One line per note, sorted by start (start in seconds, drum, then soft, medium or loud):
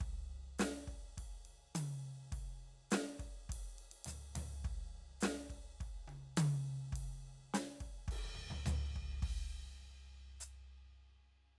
0.01 kick soft
0.01 ride soft
0.59 snare medium
0.59 hi-hat pedal medium
0.59 ride medium
0.88 kick soft
0.88 ride soft
1.18 kick soft
1.18 ride soft
1.45 high tom soft
1.45 ride soft
1.75 hi-hat pedal medium
1.75 high tom medium
1.75 ride medium
2.00 ride soft
2.32 kick soft
2.32 ride soft
2.91 snare medium
2.91 hi-hat pedal medium
2.91 ride medium
3.19 kick soft
3.19 ride soft
3.50 kick soft
3.50 ride medium
3.79 ride soft
3.92 ride soft
4.05 floor tom soft
4.05 hi-hat pedal medium
4.05 ride medium
4.36 floor tom medium
4.36 ride medium
4.65 kick soft
4.65 ride soft
5.21 snare medium
5.21 hi-hat pedal medium
5.21 ride medium
5.50 kick soft
5.50 ride soft
5.81 kick soft
5.81 ride soft
6.08 high tom soft
6.08 ride soft
6.37 hi-hat pedal medium
6.37 high tom loud
6.37 ride medium
6.93 kick soft
6.93 ride medium
7.54 snare medium
7.54 hi-hat pedal medium
7.54 ride medium
7.81 kick soft
7.81 ride soft
8.08 kick soft
8.08 ride medium
8.25 floor tom soft
8.35 floor tom soft
8.50 floor tom medium
8.66 floor tom medium
8.66 hi-hat pedal medium
8.96 kick soft
9.23 kick soft
9.23 crash soft
10.41 hi-hat pedal medium